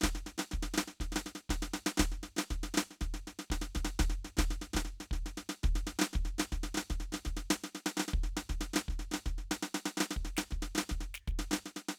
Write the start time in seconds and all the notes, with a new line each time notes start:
0.01 kick, snare
0.04 snare
0.15 snare
0.26 snare
0.38 snare
0.51 kick, snare
0.62 snare
0.74 snare
0.78 snare
0.88 snare
1.00 kick, snare
1.12 snare
1.16 snare
1.26 snare
1.35 snare
1.49 kick, snare
1.62 snare
1.74 snare
1.86 snare
1.97 kick, snare
1.99 snare
2.12 snare
2.23 snare
2.36 snare
2.38 snare
2.50 kick, snare
2.63 snare
2.74 snare
2.77 snare
2.91 snare
3.01 kick, snare
3.14 snare
3.27 snare
3.39 snare
3.50 kick, snare
3.61 snare
3.75 kick, snare
3.85 snare
3.99 kick, snare
4.10 snare
4.25 snare
4.37 kick, snare
4.39 snare
4.50 snare
4.61 snare
4.73 kick, snare
4.77 snare
4.85 snare
5.00 snare
5.11 kick, snare
5.26 snare
5.37 snare
5.49 snare
5.63 kick, snare
5.75 snare
5.87 snare
5.99 snare
6.01 snare
6.13 kick, snare
6.25 snare
6.38 snare
6.52 kick, snare
6.63 snare
6.74 snare
6.77 snare
6.90 kick, snare
7.00 snare
7.12 snare
7.14 snare
7.25 kick, snare
7.37 snare
7.50 snare
7.64 snare
7.75 snare
7.86 snare
7.97 snare
8.00 snare
8.08 snare
8.13 kick
8.23 snare
8.37 snare
8.49 kick, snare
8.61 snare
8.73 snare
8.76 snare
8.88 kick, snare
8.99 snare
9.11 snare
9.14 snare
9.26 kick, snare
9.38 snare
9.51 snare
9.63 snare
9.74 snare
9.86 snare
9.97 snare
10.00 snare
10.11 snare
10.16 kick
10.25 snare
10.37 snare
10.51 kick, snare
10.62 snare
10.75 snare
10.78 snare
10.89 kick, snare
11.01 snare
11.14 snare
11.28 kick, snare
11.39 snare
11.51 snare
11.53 snare
11.66 snare
11.76 snare
11.89 snare